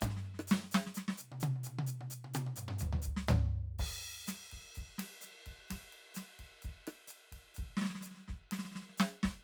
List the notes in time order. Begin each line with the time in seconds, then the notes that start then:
0.01 kick, hi-hat pedal, mid tom
0.08 kick, snare
0.17 snare
0.25 snare
0.34 snare
0.39 cross-stick
0.48 snare, hi-hat pedal
0.64 snare
0.72 snare, hi-hat pedal
0.87 snare
0.95 snare, hi-hat pedal
1.08 snare
1.18 hi-hat pedal, high tom
1.32 high tom
1.40 hi-hat pedal, high tom
1.56 high tom
1.64 hi-hat pedal, high tom
1.79 high tom
1.87 hi-hat pedal
2.01 high tom
2.10 hi-hat pedal
2.25 high tom
2.34 hi-hat pedal, high tom
2.47 high tom
2.56 hi-hat pedal, mid tom
2.68 mid tom
2.79 floor tom, hi-hat pedal
2.83 kick
2.88 kick
2.93 floor tom
3.02 kick, hi-hat pedal
3.12 kick
3.17 snare
3.28 kick, hi-hat pedal, floor tom
3.79 kick, hi-hat pedal, crash
3.87 kick
4.27 snare, hi-hat pedal, ride
4.52 kick, ride
4.58 kick, snare
4.75 kick, hi-hat pedal, ride
4.83 kick
4.99 snare, ride
5.21 snare, hi-hat pedal, ride
5.31 snare
5.46 kick, ride
5.52 kick
5.68 kick, snare, hi-hat pedal, ride
5.77 kick
5.93 ride
6.15 snare, hi-hat pedal, ride
6.39 kick, ride
6.62 kick, hi-hat pedal, ride
6.71 kick
6.87 cross-stick, ride
7.08 hi-hat pedal, ride
7.32 kick, ride
7.55 kick, hi-hat pedal, ride
7.65 kick
7.77 snare
7.82 snare
7.85 snare
7.90 snare
7.95 snare
8.01 snare, hi-hat pedal
8.06 snare
8.11 snare
8.15 snare
8.17 snare
8.20 snare
8.28 kick, snare
8.51 snare, ride
8.59 snare
8.65 snare
8.72 snare
8.76 snare
8.82 snare
8.89 snare
8.97 snare, hi-hat pedal
9.00 snare
9.23 kick, snare